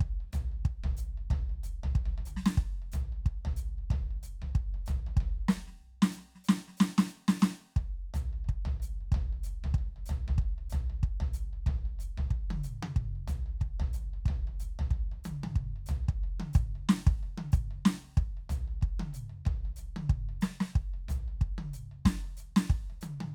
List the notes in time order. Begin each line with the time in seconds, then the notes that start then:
0.01 kick, floor tom
0.21 floor tom
0.33 floor tom, hi-hat pedal
0.52 floor tom
0.66 kick, floor tom
0.84 floor tom
0.97 floor tom, hi-hat pedal
1.18 floor tom
1.31 kick, floor tom
1.50 floor tom
1.64 floor tom, hi-hat pedal
1.84 floor tom
1.96 kick, floor tom
2.06 floor tom
2.18 floor tom
2.26 hi-hat pedal, high tom
2.37 snare
2.46 snare
2.58 kick, floor tom
2.82 floor tom
2.92 floor tom, hi-hat pedal
3.13 floor tom
3.26 kick, floor tom
3.45 floor tom
3.57 floor tom, hi-hat pedal
3.79 floor tom
3.91 kick, floor tom
4.11 floor tom
4.23 floor tom, hi-hat pedal
4.42 floor tom
4.56 kick, floor tom
4.75 floor tom
4.87 floor tom, hi-hat pedal
5.07 floor tom
5.17 kick, floor tom
5.49 snare, hi-hat pedal
5.68 snare
6.03 snare
6.12 hi-hat pedal
6.17 snare
6.36 snare
6.45 hi-hat pedal
6.49 snare
6.68 snare
6.78 snare, hi-hat pedal
6.99 snare
7.08 hi-hat pedal
7.29 snare
7.40 snare, hi-hat pedal
7.77 kick, floor tom
8.14 floor tom, hi-hat pedal
8.33 floor tom
8.45 floor tom
8.49 kick
8.66 floor tom
8.80 floor tom, hi-hat pedal
9.01 floor tom
9.12 kick, floor tom
9.33 floor tom
9.44 floor tom, hi-hat pedal
9.64 floor tom
9.75 kick
9.79 floor tom
9.96 floor tom
10.06 floor tom, hi-hat pedal
10.28 floor tom
10.39 kick, floor tom
10.59 floor tom
10.70 floor tom, hi-hat pedal
10.90 floor tom
11.04 kick, floor tom
11.21 floor tom
11.34 floor tom, hi-hat pedal
11.54 floor tom
11.67 kick, floor tom
11.86 floor tom
12.00 kick, floor tom, hi-hat pedal
12.18 floor tom
12.31 kick, floor tom
12.51 high tom
12.64 floor tom, hi-hat pedal
12.83 high tom
12.96 kick, floor tom
13.16 floor tom
13.28 floor tom, hi-hat pedal
13.47 floor tom
13.61 kick, floor tom
13.80 floor tom
13.94 floor tom, hi-hat pedal
14.14 floor tom
14.26 kick, floor tom
14.48 floor tom
14.60 floor tom, hi-hat pedal
14.80 floor tom
14.91 kick, floor tom
15.12 floor tom
15.25 hi-hat pedal, high tom
15.44 high tom
15.56 kick, floor tom
15.76 floor tom
15.87 floor tom, hi-hat pedal
16.09 kick, floor tom
16.24 floor tom
16.40 high tom
16.54 kick, hi-hat pedal
16.58 floor tom
16.76 floor tom
16.89 snare
17.07 kick, floor tom
17.23 floor tom
17.38 high tom
17.52 kick, floor tom, hi-hat pedal
17.71 floor tom
17.86 snare
18.18 kick, floor tom
18.37 floor tom
18.50 floor tom, hi-hat pedal
18.68 floor tom
18.82 kick, floor tom
19.00 high tom
19.14 floor tom, hi-hat pedal
19.30 floor tom
19.46 kick, floor tom
19.66 floor tom
19.77 floor tom, hi-hat pedal
19.97 high tom
20.10 kick, floor tom
20.29 kick, floor tom
20.42 snare, hi-hat pedal
20.61 snare
20.74 kick, floor tom
20.94 floor tom
21.09 kick, floor tom, hi-hat pedal
21.28 floor tom
21.41 kick, floor tom
21.59 high tom
21.74 floor tom, hi-hat pedal
21.92 floor tom
22.06 kick, snare
22.25 kick, floor tom
22.37 kick, floor tom, hi-hat pedal
22.57 snare
22.70 kick, floor tom
22.90 floor tom
23.02 hi-hat pedal, high tom
23.21 high tom